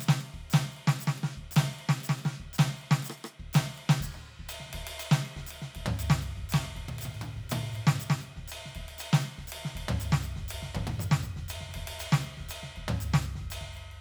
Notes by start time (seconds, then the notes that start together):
0.01 ride, percussion
0.09 snare
0.19 ride, percussion
0.34 kick
0.51 snare, ride, percussion
0.72 percussion
0.77 ride
0.88 snare
1.00 ride, percussion
1.08 snare
1.18 ride
1.24 snare
1.38 kick
1.52 percussion
1.57 snare, ride
1.64 snare
1.74 percussion
1.79 ride
1.89 snare
2.01 ride bell, percussion
2.10 snare
2.19 ride
2.24 snare, percussion
2.40 kick
2.54 percussion
2.59 snare, ride bell
2.67 snare
2.77 percussion
2.82 ride
2.91 snare
3.03 ride, percussion
3.10 cross-stick
3.18 ride
3.25 cross-stick, percussion
3.40 kick
3.54 snare, ride, percussion
3.61 snare
3.75 ride, percussion
3.90 snare
4.01 kick, percussion, crash
4.07 kick, cross-stick
4.15 high tom
4.40 kick
4.49 ride bell, percussion
4.60 snare
4.67 snare
4.70 snare, ride
4.74 kick, snare
4.77 snare
4.79 kick, snare
4.87 ride
5.00 ride bell, percussion
5.12 snare
5.26 ride
5.37 kick, snare
5.47 ride, percussion
5.62 snare
5.75 kick, ride
5.86 floor tom
6.00 ride, percussion
6.10 snare
6.22 ride, percussion
6.38 kick
6.50 ride, percussion
6.54 snare
6.76 kick, ride
6.89 high tom
6.99 ride, percussion
7.06 high tom
7.15 ride bell
7.22 high tom, percussion
7.37 kick
7.50 high tom, ride, percussion
7.73 ride, percussion
7.87 snare
8.00 ride, percussion
8.10 snare
8.21 ride, percussion
8.37 kick, snare
8.48 percussion
8.52 ride bell
8.66 snare, percussion
8.75 kick, ride
8.81 snare
8.88 snare, ride
8.99 ride bell, percussion
9.13 snare
9.21 percussion
9.26 ride
9.38 kick, snare
9.48 percussion
9.53 ride
9.65 snare
9.76 kick, ride
9.81 kick
9.89 floor tom
10.00 ride, percussion
10.13 snare
10.23 ride, percussion
10.37 kick, snare
10.49 ride, percussion
10.63 snare
10.75 kick, floor tom
10.82 kick
10.87 high tom
11.00 mid tom, percussion
11.12 snare
11.23 mid tom, percussion
11.37 kick, snare
11.49 ride bell, percussion
11.61 snare
11.69 snare, percussion
11.75 kick, snare, ride
11.80 kick, snare
11.86 snare, ride
12.00 ride bell, percussion
12.13 snare
12.22 ride, percussion
12.38 kick, snare
12.49 ride bell, percussion
12.64 snare
12.77 kick, ride
12.89 floor tom
13.01 ride, percussion
13.14 snare
13.23 percussion
13.36 snare
13.41 kick
13.51 ride bell, percussion
13.61 snare
13.69 snare
13.73 snare, percussion
13.77 snare, ride
13.84 snare
13.87 snare
13.92 ride